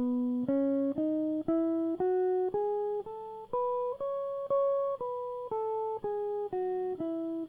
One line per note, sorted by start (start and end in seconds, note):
0.00 0.48 B3
0.49 0.96 C#4
0.99 1.45 D#4
1.49 1.99 E4
2.01 2.53 F#4
2.55 3.04 G#4
3.05 3.44 A4
3.54 3.98 B4
4.01 4.50 C#5
4.51 4.98 C#5
5.02 5.52 B4
5.52 6.01 A4
6.05 6.50 G#4
6.54 6.97 F#4
7.01 7.47 E4